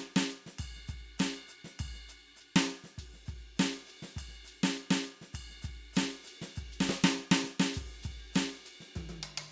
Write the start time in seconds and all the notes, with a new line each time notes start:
0.01 hi-hat pedal, ride
0.17 snare
0.30 hi-hat pedal, ride
0.47 snare
0.59 kick, hi-hat pedal, ride bell
0.77 snare
0.82 snare
0.88 kick, hi-hat pedal, ride
1.19 snare, hi-hat pedal, ride bell
1.49 hi-hat pedal, ride
1.65 snare
1.79 kick, hi-hat pedal, ride bell
1.87 kick
1.90 kick
1.94 snare
2.09 hi-hat pedal, ride
2.37 hi-hat pedal
2.41 ride
2.56 snare
2.65 hi-hat pedal
2.70 ride
2.84 snare
2.97 kick, hi-hat pedal, ride
3.14 snare
3.26 kick, hi-hat pedal, ride
3.37 kick
3.57 snare, hi-hat pedal, ride
3.87 hi-hat pedal, ride
4.03 snare
4.17 kick, hi-hat pedal, ride bell
4.22 kick
4.29 snare
4.34 snare
4.45 hi-hat pedal, ride
4.64 snare
4.73 hi-hat pedal
4.78 ride
4.91 snare
5.02 hi-hat pedal
5.07 ride
5.22 snare
5.34 kick, hi-hat pedal, ride bell
5.50 snare
5.57 snare
5.62 kick, snare, hi-hat pedal, ride
5.94 snare, hi-hat pedal, ride
6.04 snare
6.24 hi-hat pedal, ride
6.42 snare
6.56 kick, hi-hat pedal, ride
6.66 kick
6.73 ride
6.81 snare
6.85 hi-hat pedal
6.90 snare
7.04 snare
7.17 snare, hi-hat pedal
7.32 snare
7.45 snare, hi-hat pedal
7.60 snare
7.75 kick, hi-hat pedal, ride
7.83 kick
7.86 kick
8.02 snare, hi-hat pedal, ride
8.05 kick, snare
8.12 kick
8.34 snare, hi-hat pedal, ride
8.45 snare
8.66 hi-hat pedal, ride
8.81 snare
8.94 kick, hi-hat pedal, high tom
9.05 kick
9.10 high tom
9.23 hi-hat pedal, high tom
9.38 high tom
9.49 hi-hat pedal